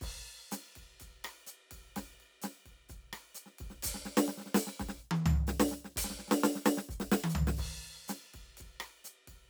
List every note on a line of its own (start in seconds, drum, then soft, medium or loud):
0.01 kick soft
0.01 hi-hat pedal soft
0.01 crash medium
0.51 snare medium
0.51 hi-hat pedal medium
0.51 ride medium
0.75 kick soft
0.75 ride medium
0.81 kick soft
1.00 kick soft
1.00 hi-hat pedal soft
1.00 ride soft
1.06 kick soft
1.24 cross-stick medium
1.24 ride medium
1.46 hi-hat pedal medium
1.71 kick soft
1.71 ride medium
1.76 kick soft
1.95 kick soft
1.95 snare medium
1.95 hi-hat pedal soft
1.95 ride medium
2.02 kick soft
2.20 ride soft
2.42 snare medium
2.42 hi-hat pedal medium
2.42 ride medium
2.65 kick soft
2.65 ride soft
2.89 kick soft
2.89 hi-hat pedal soft
2.89 ride soft
3.13 cross-stick medium
3.13 ride medium
3.34 hi-hat pedal medium
3.34 ride soft
3.46 snare soft
3.58 kick soft
3.58 ride medium
3.66 kick soft
3.66 snare soft
3.82 kick soft
3.82 closed hi-hat medium
3.82 hi-hat pedal loud
3.91 kick soft
3.91 snare soft
4.05 snare medium
4.17 snare loud
4.28 snare medium
4.37 snare soft
4.40 snare soft
4.46 snare soft
4.54 snare loud
4.54 hi-hat pedal loud
4.67 snare soft
4.79 kick soft
4.79 snare medium
4.88 snare medium
4.99 hi-hat pedal soft
5.11 hi-hat pedal soft
5.11 high tom loud
5.25 floor tom loud
5.36 snare soft
5.47 snare medium
5.47 hi-hat pedal medium
5.60 snare loud
5.68 snare soft
5.68 hi-hat pedal medium
5.84 snare soft
5.96 kick soft
5.96 closed hi-hat loud
5.96 hi-hat pedal loud
6.04 kick soft
6.04 snare medium
6.10 snare medium
6.19 snare soft
6.28 snare soft
6.31 snare loud
6.43 snare loud
6.55 snare medium
6.65 snare loud
6.65 hi-hat pedal medium
6.77 snare medium
6.89 kick soft
6.89 hi-hat pedal soft
6.97 kick soft
6.97 snare medium
7.12 snare loud
7.24 high tom loud
7.30 hi-hat pedal medium
7.35 floor tom loud
7.47 snare medium
7.56 kick soft
7.56 hi-hat pedal soft
7.56 crash medium
7.65 kick soft
7.72 cross-stick soft
8.08 snare medium
8.08 hi-hat pedal medium
8.08 ride medium
8.34 kick soft
8.34 ride soft
8.39 kick soft
8.46 snare soft
8.57 kick soft
8.57 hi-hat pedal soft
8.57 ride medium
8.65 kick soft
8.80 cross-stick medium
8.80 ride medium
9.04 snare soft
9.04 hi-hat pedal medium
9.27 kick soft
9.27 ride medium
9.32 kick soft